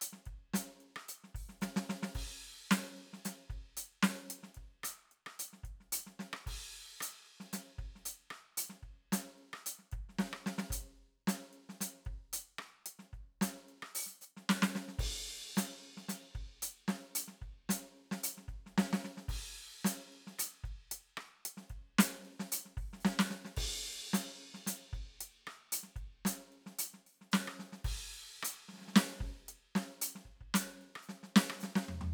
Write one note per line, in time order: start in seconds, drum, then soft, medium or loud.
0.01 closed hi-hat loud
0.12 snare soft
0.25 kick soft
0.25 closed hi-hat soft
0.53 closed hi-hat loud
0.53 snare medium
0.80 closed hi-hat soft
0.96 cross-stick medium
1.08 closed hi-hat medium
1.23 snare soft
1.34 kick soft
1.34 open hi-hat medium
1.49 snare soft
1.61 snare medium
1.61 hi-hat pedal medium
1.76 snare medium
1.89 snare medium
2.02 snare medium
2.15 kick soft
2.15 crash medium
2.41 closed hi-hat soft
2.71 closed hi-hat medium
2.71 snare loud
2.96 closed hi-hat soft
3.13 snare soft
3.25 closed hi-hat medium
3.25 snare medium
3.49 kick soft
3.49 closed hi-hat soft
3.77 closed hi-hat medium
4.02 snare loud
4.30 closed hi-hat loud
4.43 snare soft
4.54 kick soft
4.54 closed hi-hat soft
4.83 closed hi-hat loud
4.83 cross-stick medium
5.11 closed hi-hat soft
5.26 cross-stick medium
5.39 closed hi-hat medium
5.53 snare soft
5.63 kick soft
5.63 closed hi-hat soft
5.80 snare soft
5.92 closed hi-hat loud
6.06 snare soft
6.19 snare soft
6.33 cross-stick medium
6.46 kick soft
6.46 crash medium
6.73 closed hi-hat soft
7.00 closed hi-hat loud
7.00 cross-stick medium
7.26 closed hi-hat soft
7.40 snare soft
7.53 closed hi-hat medium
7.53 snare medium
7.78 kick soft
7.78 closed hi-hat soft
7.95 snare soft
8.05 closed hi-hat medium
8.30 cross-stick medium
8.57 closed hi-hat loud
8.69 snare soft
8.82 kick soft
8.82 closed hi-hat soft
9.12 closed hi-hat loud
9.12 snare medium
9.38 closed hi-hat soft
9.53 cross-stick medium
9.66 closed hi-hat loud
9.78 snare soft
9.91 kick soft
9.91 closed hi-hat soft
10.09 snare soft
10.18 snare medium
10.33 cross-stick medium
10.46 snare medium
10.58 snare medium
10.70 closed hi-hat medium
10.70 kick soft
10.95 closed hi-hat soft
11.27 closed hi-hat medium
11.27 snare medium
11.53 closed hi-hat soft
11.69 snare soft
11.80 closed hi-hat loud
11.80 snare medium
12.05 kick soft
12.05 closed hi-hat soft
12.33 closed hi-hat loud
12.58 cross-stick medium
12.86 closed hi-hat loud
12.99 snare soft
13.13 kick soft
13.13 closed hi-hat soft
13.41 closed hi-hat medium
13.41 snare medium
13.68 closed hi-hat soft
13.82 cross-stick medium
13.95 open hi-hat loud
14.06 snare soft
14.21 hi-hat pedal medium
14.36 snare soft
14.49 snare loud
14.62 snare loud
14.75 snare medium
14.88 snare soft
14.98 kick medium
14.98 ride medium
15.55 closed hi-hat loud
15.55 snare medium
15.55 hi-hat pedal medium
15.83 closed hi-hat soft
15.97 snare soft
16.08 closed hi-hat medium
16.08 snare medium
16.35 kick soft
16.35 closed hi-hat soft
16.62 closed hi-hat loud
16.88 snare medium
17.15 closed hi-hat loud
17.27 snare soft
17.41 kick soft
17.41 closed hi-hat soft
17.69 closed hi-hat loud
17.69 snare medium
17.97 closed hi-hat soft
18.11 snare medium
18.23 closed hi-hat loud
18.37 snare soft
18.48 kick soft
18.48 closed hi-hat soft
18.66 snare soft
18.78 snare loud
18.93 snare medium
19.04 snare soft
19.17 snare soft
19.28 kick soft
19.28 crash medium
19.55 closed hi-hat soft
19.84 closed hi-hat loud
19.84 snare medium
20.12 closed hi-hat soft
20.27 snare soft
20.39 closed hi-hat loud
20.39 cross-stick medium
20.63 kick soft
20.63 closed hi-hat soft
20.91 closed hi-hat loud
21.17 cross-stick medium
21.45 closed hi-hat loud
21.57 snare soft
21.69 kick soft
21.69 closed hi-hat soft
21.98 closed hi-hat loud
21.98 snare loud
22.25 closed hi-hat soft
22.39 snare medium
22.52 closed hi-hat loud
22.65 snare soft
22.77 kick soft
22.77 open hi-hat soft
22.93 snare soft
23.00 hi-hat pedal soft
23.05 snare loud
23.19 snare loud
23.30 snare soft
23.45 snare soft
23.57 kick soft
23.57 ride loud
24.13 closed hi-hat medium
24.13 snare medium
24.39 closed hi-hat soft
24.54 snare soft
24.66 closed hi-hat loud
24.66 snare medium
24.93 kick soft
24.93 closed hi-hat soft
25.20 closed hi-hat loud
25.47 cross-stick medium
25.72 closed hi-hat loud
25.83 snare soft
25.96 kick soft
25.96 closed hi-hat soft
26.25 closed hi-hat loud
26.25 snare medium
26.52 closed hi-hat soft
26.66 snare soft
26.79 closed hi-hat loud
26.93 snare soft
27.06 open hi-hat soft
27.21 snare soft
27.31 snare loud
27.31 hi-hat pedal medium
27.47 cross-stick medium
27.59 snare soft
27.72 snare soft
27.84 kick soft
27.84 crash medium
28.13 closed hi-hat soft
28.43 closed hi-hat loud
28.43 cross-stick medium
28.68 snare soft
28.73 snare soft
28.77 snare soft
28.81 snare soft
28.93 snare soft
28.96 snare loud
29.20 kick soft
29.48 closed hi-hat medium
29.75 snare medium
30.01 closed hi-hat loud
30.15 snare soft
30.25 kick soft
30.40 kick soft
30.54 closed hi-hat loud
30.54 snare medium
30.81 closed hi-hat soft
30.95 cross-stick medium
31.02 hi-hat pedal soft
31.09 snare soft
31.23 snare soft
31.36 snare loud
31.50 cross-stick medium
31.60 snare medium
31.60 hi-hat pedal medium
31.75 snare medium
31.88 floor tom medium
32.01 floor tom medium